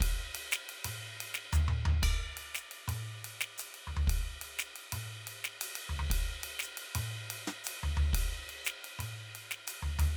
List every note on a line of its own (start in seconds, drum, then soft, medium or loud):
0.01 kick medium
0.01 ride loud
0.35 ride loud
0.52 snare medium
0.52 hi-hat pedal medium
0.69 ride medium
0.85 mid tom medium
0.85 ride loud
1.21 ride medium
1.35 snare medium
1.53 floor tom loud
1.53 hi-hat pedal medium
1.68 mid tom loud
1.86 floor tom loud
2.03 kick medium
2.03 ride bell loud
2.37 ride medium
2.55 snare medium
2.55 hi-hat pedal medium
2.72 ride medium
2.88 mid tom loud
2.88 ride medium
3.25 ride medium
3.41 snare medium
3.58 hi-hat pedal medium
3.58 ride medium
3.75 ride medium
3.87 floor tom medium
3.97 floor tom loud
4.08 kick medium
4.08 ride loud
4.42 ride medium
4.59 snare medium
4.59 hi-hat pedal medium
4.76 ride medium
4.93 mid tom medium
4.93 ride loud
5.27 ride medium
5.45 snare medium
5.61 hi-hat pedal medium
5.61 ride loud
5.76 ride medium
5.90 floor tom medium
6.11 kick medium
6.11 ride loud
6.44 ride loud
6.60 snare medium
6.60 hi-hat pedal medium
6.78 ride medium
6.95 mid tom loud
6.95 ride loud
7.31 ride loud
7.48 snare medium
7.64 hi-hat pedal medium
7.64 ride loud
7.84 floor tom medium
7.97 floor tom loud
8.14 kick medium
8.14 ride loud
8.50 ride medium
8.65 snare medium
8.65 hi-hat pedal medium
8.85 ride medium
8.99 mid tom medium
8.99 ride medium
9.35 ride medium
9.51 snare medium
9.67 hi-hat pedal medium
9.67 ride loud
9.83 floor tom medium
9.99 floor tom loud
9.99 ride medium